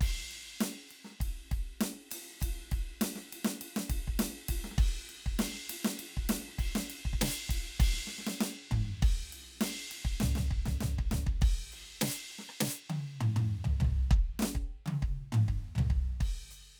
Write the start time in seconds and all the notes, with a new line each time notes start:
0.01 kick, ride
0.31 ride
0.59 snare, hi-hat pedal, ride
0.89 hi-hat pedal, ride
1.05 snare
1.11 snare
1.19 kick, snare, ride
1.52 kick, ride
1.81 snare, ride
2.11 ride, percussion
2.41 kick, hi-hat pedal, ride
2.72 kick, ride
3.01 snare, ride
3.16 snare
3.33 ride
3.45 snare
3.58 hi-hat pedal, ride
3.77 snare
3.90 kick, ride
4.08 kick
4.19 snare, ride
4.49 kick, ride
4.64 snare
4.72 snare
4.78 kick, crash
5.09 ride
5.26 kick
5.39 snare, ride
5.54 snare
5.70 hi-hat pedal, ride
5.85 snare
5.97 hi-hat pedal, ride
6.17 kick
6.29 snare, ride
6.48 snare
6.59 kick, ride
6.75 snare
6.90 ride
7.05 kick
7.13 kick
7.21 snare, ride
7.50 kick, ride
7.80 kick, ride
7.93 snare
8.07 snare
8.19 snare
8.27 snare
8.41 snare
8.71 kick, mid tom
9.03 kick, crash
9.33 ride
9.61 snare, ride
9.91 ride
10.05 kick
10.20 snare, floor tom
10.36 snare, floor tom
10.51 kick
10.66 snare, floor tom
10.81 snare, floor tom
10.99 kick
11.12 snare, floor tom
11.27 kick
11.42 kick, crash
11.72 ride
12.02 snare, ride
12.29 ride
12.39 snare
12.49 cross-stick
12.61 snare
12.90 high tom
13.21 mid tom
13.36 mid tom
13.65 floor tom
13.80 floor tom
13.85 kick
14.11 kick
14.39 snare
14.43 snare
14.55 kick
14.86 high tom
14.88 high tom
15.03 kick
15.33 mid tom
15.34 mid tom
15.49 kick
15.76 floor tom
15.78 floor tom
15.90 kick
16.21 kick, crash
16.51 closed hi-hat